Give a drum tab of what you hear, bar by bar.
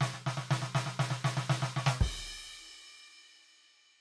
CC |----------------|x---------------|
SD |oooooooooooooooo|----------------|
BD |----------------|o---------------|